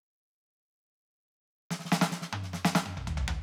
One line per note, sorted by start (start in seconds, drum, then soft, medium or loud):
1.71 snare loud
1.79 snare medium
1.85 snare medium
1.92 snare loud
2.01 snare loud
2.11 snare loud
2.33 high tom loud
2.43 snare soft
2.53 snare medium
2.65 snare loud
2.75 snare loud
2.86 high tom loud
2.97 floor tom loud
3.07 mid tom loud
3.17 floor tom loud
3.28 mid tom loud